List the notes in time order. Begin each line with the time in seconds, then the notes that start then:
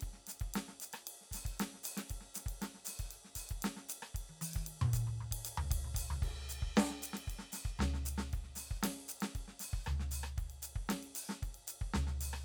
0.01 kick, ride
0.13 snare
0.27 snare, hi-hat pedal, ride
0.40 kick, ride
0.54 snare, ride
0.68 snare
0.80 hi-hat pedal, ride
0.93 cross-stick, ride
1.07 hi-hat pedal, ride
1.21 snare
1.31 kick, snare, hi-hat pedal, ride
1.45 kick, ride
1.57 snare, hi-hat pedal, ride
1.74 snare
1.84 hi-hat pedal, ride
1.97 snare, ride
2.09 kick, hi-hat pedal, ride
2.21 snare
2.35 snare, hi-hat pedal, ride
2.46 kick, ride
2.59 snare, hi-hat pedal, ride
2.75 snare
2.85 snare, hi-hat pedal, ride
2.99 kick, ride
3.11 ride
3.25 snare
3.35 kick, hi-hat pedal, ride
3.49 kick, ride
3.62 snare, ride
3.77 snare
3.89 hi-hat pedal, ride
4.02 cross-stick
4.15 kick, ride
4.29 high tom
4.41 hi-hat pedal, high tom
4.54 kick, ride
4.67 ride
4.81 mid tom
4.93 kick, hi-hat pedal, ride
5.07 floor tom
5.21 floor tom
5.31 kick, ride
5.45 hi-hat pedal, ride
5.58 floor tom
5.71 kick, ride
5.84 mid tom
5.95 kick, hi-hat pedal, ride
6.10 floor tom
6.22 kick, ride
6.49 hi-hat pedal, ride
6.62 kick
6.76 snare, ride
6.90 snare
7.02 hi-hat pedal, ride
7.13 snare, ride
7.27 kick, hi-hat pedal, ride
7.39 snare
7.52 snare, hi-hat pedal, ride
7.65 kick
7.78 snare, floor tom, hi-hat pedal
7.94 snare
8.03 kick, hi-hat pedal, ride
8.18 snare
8.29 hi-hat pedal
8.33 kick, ride
8.44 snare
8.55 snare, hi-hat pedal, ride
8.71 kick
8.81 snare, hi-hat pedal, ride
9.08 hi-hat pedal, ride
9.21 snare, ride
9.35 kick, ride
9.48 snare
9.60 snare, hi-hat pedal, ride
9.73 kick
9.84 cross-stick, floor tom, hi-hat pedal
10.00 snare
10.11 hi-hat pedal, ride
10.23 cross-stick
10.38 kick, ride
10.50 ride
10.62 hi-hat pedal, ride
10.76 kick
10.87 snare, hi-hat pedal, ride
11.03 ride
11.15 hi-hat pedal, ride
11.29 snare
11.43 kick, ride
11.55 ride
11.67 hi-hat pedal, ride
11.81 kick
11.94 snare, floor tom
12.07 snare
12.21 hi-hat pedal, ride
12.33 cross-stick